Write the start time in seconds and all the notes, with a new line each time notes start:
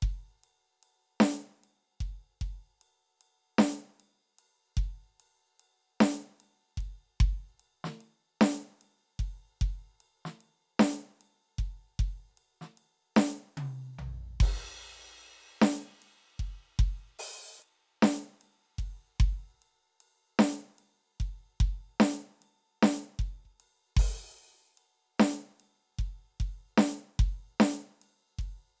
0.02 kick, ride
0.43 ride
0.83 ride
1.20 snare, ride
1.64 ride
2.00 kick, ride
2.41 kick, ride
2.81 ride
3.21 ride
3.58 snare, ride
4.00 ride
4.38 ride
4.77 kick, ride
5.20 ride
5.59 ride
6.00 snare, ride
6.40 ride
6.77 kick, ride
7.20 kick, ride
7.59 ride
7.84 snare
8.01 ride
8.41 snare, ride
8.56 snare
8.81 ride
9.19 kick, ride
9.61 kick, ride
10.00 ride
10.25 snare
10.40 ride
10.79 snare, ride
10.95 snare
11.21 ride
11.58 kick, ride
11.99 kick, ride
12.29 snare
12.37 ride
12.61 snare
12.77 ride
13.16 snare, ride
13.57 high tom, ride
13.98 floor tom
14.40 kick, crash
14.83 ride
15.21 ride
15.62 snare, ride
16.02 ride
16.39 kick, ride
16.79 kick, ride
17.19 open hi-hat, ride
17.59 hi-hat pedal, ride
18.02 snare, ride
18.41 ride
18.78 kick, ride
19.20 kick, ride
19.62 ride
20.00 ride
20.39 snare, ride
20.53 snare
20.78 ride
21.20 kick, ride
21.60 kick, ride
22.00 snare, ride
22.40 snare, ride
22.82 snare
23.19 kick, ride
23.45 kick
23.60 ride
23.96 open hi-hat, kick, ride
24.39 ride
24.77 ride
25.19 snare, hi-hat pedal, ride
25.60 ride
25.98 kick, ride
26.40 kick, ride
26.78 snare
27.16 kick, snare
27.21 ride
27.60 snare, ride
28.02 ride
28.39 kick, ride